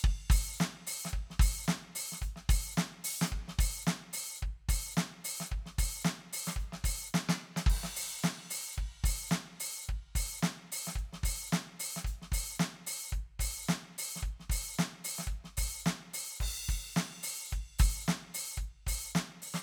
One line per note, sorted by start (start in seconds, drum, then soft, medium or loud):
0.01 kick loud
0.01 hi-hat pedal soft
0.08 snare soft
0.13 snare soft
0.17 snare soft
0.30 open hi-hat loud
0.30 kick loud
0.57 snare loud
0.57 hi-hat pedal medium
0.87 open hi-hat loud
1.05 snare medium
1.09 kick medium
1.09 hi-hat pedal medium
1.30 snare soft
1.40 open hi-hat loud
1.40 kick loud
1.65 snare loud
1.65 hi-hat pedal medium
1.96 open hi-hat loud
2.12 snare soft
2.18 kick medium
2.18 hi-hat pedal medium
2.22 closed hi-hat soft
2.36 snare soft
2.49 open hi-hat loud
2.49 kick loud
2.74 snare loud
2.74 hi-hat pedal medium
3.04 open hi-hat loud
3.22 snare loud
3.28 hi-hat pedal medium
3.32 kick medium
3.32 closed hi-hat soft
3.48 snare medium
3.59 open hi-hat loud
3.59 kick loud
3.83 hi-hat pedal soft
3.87 snare loud
4.13 open hi-hat loud
4.38 hi-hat pedal soft
4.43 kick medium
4.69 open hi-hat loud
4.69 kick medium
4.94 snare loud
4.94 hi-hat pedal medium
5.25 open hi-hat loud
5.40 snare medium
5.46 hi-hat pedal soft
5.52 kick medium
5.52 closed hi-hat soft
5.66 snare soft
5.79 open hi-hat loud
5.79 kick medium
6.02 snare loud
6.02 hi-hat pedal medium
6.33 open hi-hat loud
6.47 snare medium
6.53 kick medium
6.53 hi-hat pedal soft
6.60 closed hi-hat soft
6.73 snare medium
6.84 open hi-hat loud
6.84 kick medium
7.08 hi-hat pedal medium
7.14 snare loud
7.29 snare loud
7.57 snare loud
7.57 hi-hat pedal medium
7.67 kick loud
7.67 crash medium
7.84 snare medium
7.96 open hi-hat loud
8.23 snare loud
8.23 hi-hat pedal medium
8.51 open hi-hat loud
8.75 kick medium
8.75 hi-hat pedal medium
9.04 open hi-hat loud
9.04 kick medium
9.29 snare loud
9.29 hi-hat pedal medium
9.60 open hi-hat loud
9.85 kick medium
9.85 hi-hat pedal medium
10.16 open hi-hat loud
10.16 kick medium
10.39 hi-hat pedal medium
10.43 snare loud
10.72 open hi-hat loud
10.87 snare medium
10.87 hi-hat pedal soft
10.96 kick medium
10.96 closed hi-hat soft
11.13 snare medium
11.24 open hi-hat loud
11.24 kick medium
11.48 hi-hat pedal soft
11.53 snare loud
11.80 open hi-hat loud
11.97 snare medium
11.97 hi-hat pedal medium
12.05 closed hi-hat soft
12.05 kick medium
12.22 snare soft
12.32 open hi-hat loud
12.32 kick medium
12.55 hi-hat pedal medium
12.60 snare loud
12.87 open hi-hat loud
13.09 kick medium
13.09 hi-hat pedal soft
13.40 open hi-hat loud
13.40 kick medium
13.66 snare loud
13.66 hi-hat pedal soft
13.98 open hi-hat loud
14.16 snare medium
14.16 hi-hat pedal soft
14.23 kick medium
14.40 snare soft
14.50 open hi-hat loud
14.50 kick medium
14.75 hi-hat pedal soft
14.79 snare loud
15.05 open hi-hat loud
15.19 snare medium
15.24 kick medium
15.24 hi-hat pedal soft
15.44 snare soft
15.57 open hi-hat loud
15.57 kick medium
15.81 hi-hat pedal soft
15.86 snare loud
16.14 open hi-hat loud
16.36 hi-hat pedal soft
16.40 kick medium
16.40 crash loud
16.69 open hi-hat medium
16.69 kick medium
16.93 snare loud
16.93 hi-hat pedal medium
17.23 open hi-hat loud
17.47 hi-hat pedal soft
17.47 open hi-hat soft
17.53 kick medium
17.79 open hi-hat loud
17.79 kick loud
18.04 hi-hat pedal soft
18.08 snare loud
18.35 open hi-hat loud
18.56 kick medium
18.56 hi-hat pedal soft
18.87 open hi-hat loud
18.87 kick medium
19.09 hi-hat pedal soft
19.15 snare loud
19.42 open hi-hat medium
19.54 snare medium
19.59 hi-hat pedal soft